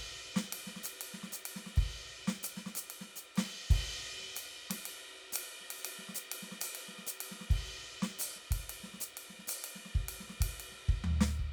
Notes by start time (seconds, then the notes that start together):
0.01 ride
0.36 snare
0.53 ride
0.67 snare
0.76 snare
0.84 hi-hat pedal, ride
1.01 ride
1.14 snare
1.23 snare
1.32 hi-hat pedal
1.46 ride
1.56 snare
1.66 snare
1.76 kick, ride
1.91 ride
2.28 snare
2.43 hi-hat pedal, ride
2.57 snare
2.66 snare
2.75 hi-hat pedal, ride
2.90 ride
3.01 snare
3.16 hi-hat pedal
3.36 snare, ride
3.71 kick, ride
4.20 snare
4.22 snare
4.27 snare
4.36 hi-hat pedal, ride
4.70 snare, ride
4.80 hi-hat pedal
4.86 ride
5.33 hi-hat pedal, ride
5.61 snare
5.71 ride
5.78 hi-hat pedal
5.85 ride
5.99 snare
6.09 snare
6.15 hi-hat pedal
6.32 ride
6.42 snare
6.52 snare
6.61 hi-hat pedal, ride
6.75 ride
6.88 snare
6.98 snare
7.07 hi-hat pedal
7.21 ride
7.32 snare
7.41 snare
7.50 kick, snare, ride
7.66 ride
8.03 snare
8.19 hi-hat pedal, ride
8.36 snare
8.51 kick, ride
8.60 hi-hat pedal
8.70 ride
8.84 snare
8.94 snare
9.01 hi-hat pedal
9.17 ride
9.30 snare
9.39 snare
9.48 hi-hat pedal, ride
9.64 ride
9.69 hi-hat pedal
9.76 snare
9.85 snare
9.95 kick
10.09 ride
10.20 snare
10.30 snare
10.41 kick, ride
10.60 ride
10.72 snare
10.89 kick
11.04 floor tom
11.21 snare
11.40 kick